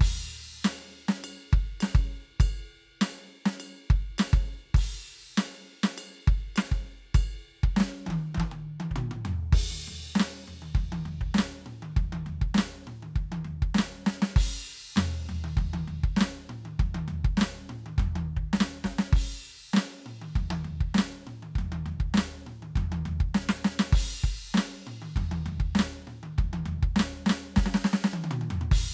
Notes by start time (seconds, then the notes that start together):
0.01 kick, crash
0.65 snare, ride bell
1.09 snare
1.25 ride bell
1.54 kick
1.81 snare, ride bell
1.96 kick
2.41 kick, ride bell
3.02 snare, ride bell
3.46 snare
3.61 ride bell
3.91 kick
4.19 snare, ride bell
4.34 kick
4.75 kick, ride bell, crash
5.38 snare, ride bell
5.84 snare
5.99 ride bell
6.28 kick
6.57 snare, ride bell
6.72 kick
7.15 kick, ride bell
7.64 kick
7.76 kick, snare
7.81 snare
8.07 kick, high tom
8.11 high tom
8.36 kick, high tom
8.41 high tom
8.52 mid tom
8.81 high tom
8.92 kick
8.97 mid tom
9.12 mid tom
9.26 floor tom
9.53 kick, ride
9.72 high tom
9.88 floor tom
10.16 snare, hi-hat pedal
10.21 snare
10.48 floor tom
10.63 high tom
10.76 kick, floor tom
10.93 high tom
11.06 floor tom
11.22 kick
11.35 snare
11.39 snare
11.67 mid tom
11.83 high tom
11.97 kick, floor tom
12.13 high tom
12.27 floor tom
12.42 kick
12.55 snare
12.59 snare
12.88 mid tom
13.03 high tom
13.17 kick, floor tom
13.33 high tom
13.46 floor tom
13.63 kick
13.75 snare
13.79 snare
14.07 snare
14.23 snare
14.37 kick, crash
14.97 snare, floor tom
15.30 floor tom
15.45 high tom
15.58 kick, floor tom
15.74 high tom
15.88 floor tom
16.04 kick
16.17 snare
16.22 snare
16.50 mid tom
16.66 high tom
16.80 kick, floor tom
16.95 high tom
17.09 floor tom
17.25 kick
17.38 snare
17.42 snare
17.70 mid tom
17.87 high tom
17.99 kick, floor tom
18.16 high tom
18.37 kick
18.54 snare
18.61 snare
18.85 kick, snare
18.99 snare
19.14 kick, snare, crash
19.74 snare, hi-hat pedal
19.77 snare
20.07 mid tom
20.23 high tom
20.36 kick, floor tom
20.51 high tom
20.65 floor tom
20.81 kick
20.95 snare
20.99 snare
21.28 mid tom
21.43 high tom
21.56 kick, floor tom
21.73 high tom
21.87 floor tom
22.01 kick
22.15 snare
22.18 snare
22.47 mid tom
22.63 high tom
22.76 kick, floor tom
22.93 high tom
23.06 floor tom
23.21 kick
23.35 snare
23.50 snare
23.65 snare
23.80 snare
23.93 kick, crash
24.25 kick
24.55 snare
24.58 snare
24.88 mid tom
25.03 high tom
25.17 kick, floor tom
25.32 high tom
25.47 floor tom
25.61 kick
25.76 snare
25.80 snare
26.08 mid tom
26.24 high tom
26.39 kick, floor tom
26.54 high tom
26.66 floor tom
26.84 kick
26.97 snare
27.00 snare
27.27 snare
27.30 snare
27.57 kick, snare
27.67 snare
27.75 snare
27.84 snare, hi-hat pedal
27.94 snare
28.05 snare
28.14 high tom
28.25 high tom
28.32 mid tom
28.42 high tom
28.51 floor tom
28.62 mid tom
28.72 kick, crash